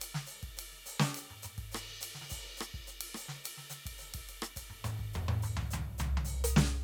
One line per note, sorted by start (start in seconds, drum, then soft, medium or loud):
0.01 hi-hat pedal medium
0.01 ride loud
0.14 snare medium
0.27 hi-hat pedal medium
0.27 ride soft
0.43 kick medium
0.43 ride medium
0.57 hi-hat pedal medium
0.57 ride loud
0.72 snare soft
0.86 hi-hat pedal medium
0.86 ride medium
1.00 snare loud
1.00 ride medium
1.14 hi-hat pedal medium
1.14 ride medium
1.30 high tom soft
1.42 hi-hat pedal medium
1.42 high tom medium
1.42 ride medium
1.58 kick medium
1.58 ride medium
1.72 cross-stick medium
1.72 hi-hat pedal medium
1.72 ride medium
1.89 snare soft
2.01 hi-hat pedal medium
2.01 ride loud
2.15 snare soft
2.21 snare soft
2.29 kick medium
2.29 hi-hat pedal medium
2.29 ride medium
2.57 cross-stick medium
2.57 hi-hat pedal medium
2.74 kick medium
2.78 snare soft
2.87 hi-hat pedal medium
3.01 ride loud
3.14 cross-stick medium
3.14 hi-hat pedal medium
3.28 snare medium
3.44 hi-hat pedal medium
3.44 ride loud
3.57 snare soft
3.70 snare soft
3.70 hi-hat pedal medium
3.70 ride medium
3.85 kick medium
3.85 ride medium
3.98 snare soft
3.98 hi-hat pedal medium
4.14 kick medium
4.14 ride loud
4.29 hi-hat pedal soft
4.29 ride medium
4.42 cross-stick medium
4.56 kick soft
4.56 hi-hat pedal medium
4.56 ride medium
4.70 high tom medium
4.84 hi-hat pedal medium
4.84 high tom medium
4.99 kick medium
5.13 hi-hat pedal soft
5.13 mid tom loud
5.28 open hi-hat soft
5.28 high tom loud
5.42 floor tom medium
5.42 hi-hat pedal medium
5.57 floor tom loud
5.71 floor tom loud
5.71 hi-hat pedal medium
5.98 floor tom loud
5.98 hi-hat pedal medium
6.17 floor tom loud
6.25 hi-hat pedal medium
6.44 open hi-hat loud
6.56 snare loud